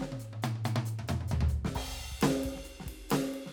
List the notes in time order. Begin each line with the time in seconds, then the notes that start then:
0.01 snare
0.12 high tom
0.19 hi-hat pedal
0.24 high tom
0.33 high tom
0.42 hi-hat pedal, high tom
0.56 high tom
0.65 hi-hat pedal, high tom
0.76 high tom
0.85 hi-hat pedal
0.99 mid tom
1.08 hi-hat pedal
1.21 mid tom
1.28 kick, floor tom, hi-hat pedal
1.41 floor tom
1.49 kick, hi-hat pedal
1.58 kick
1.65 snare
1.75 kick, hi-hat pedal, crash
1.89 kick, cross-stick
2.12 kick
2.17 kick
2.21 snare, hi-hat pedal, ride
2.29 snare
2.44 kick, ride
2.51 kick
2.55 snare
2.64 hi-hat pedal, ride
2.80 snare
2.86 kick, ride
2.92 kick
3.09 snare, hi-hat pedal, ride
3.34 ride
3.46 snare